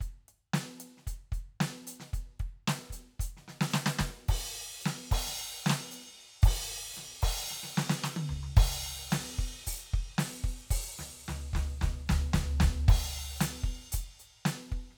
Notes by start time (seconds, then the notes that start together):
0.01 closed hi-hat, kick
0.29 closed hi-hat
0.54 snare
0.80 closed hi-hat
0.98 snare
1.07 closed hi-hat, kick
1.32 closed hi-hat, kick
1.61 snare
1.87 closed hi-hat
2.00 snare
2.14 closed hi-hat, kick
2.40 kick, closed hi-hat
2.68 snare
2.90 closed hi-hat, kick
3.20 closed hi-hat, kick
3.37 snare
3.48 snare
3.61 snare
3.71 snare, hi-hat pedal
3.86 snare
3.99 kick, snare
4.29 kick, crash
4.81 hi-hat pedal
4.86 snare
5.12 kick, crash
5.27 snare
5.37 hi-hat pedal
5.66 snare
5.70 snare
5.91 hi-hat pedal
6.43 kick, hi-hat pedal, crash
6.94 snare, hi-hat pedal
7.17 hi-hat pedal
7.22 kick, crash
7.42 snare
7.48 snare, hi-hat pedal
7.64 snare
7.78 snare
7.90 snare
8.04 snare, hi-hat pedal
8.17 high tom
8.29 kick, floor tom
8.43 floor tom
8.57 kick, crash
9.11 snare, hi-hat pedal, crash
9.39 kick, closed hi-hat
9.67 open hi-hat, kick
9.94 open hi-hat, kick
10.19 open hi-hat, snare
10.44 open hi-hat, kick
10.71 open hi-hat, kick
10.99 snare, floor tom
11.28 snare, floor tom
11.54 kick, snare, floor tom
11.82 kick, snare, floor tom
12.09 kick, snare, floor tom
12.34 kick, snare, floor tom
12.60 kick, snare, floor tom
12.89 kick, crash
13.36 hi-hat pedal
13.41 closed hi-hat, snare
13.64 kick, closed hi-hat
13.92 closed hi-hat, kick
14.20 closed hi-hat
14.46 closed hi-hat, snare
14.72 kick, closed hi-hat
14.91 snare